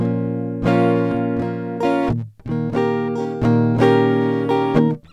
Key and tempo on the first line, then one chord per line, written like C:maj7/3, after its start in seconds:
F minor, 88 BPM
0.00 A#:min
2.73 D#:7/5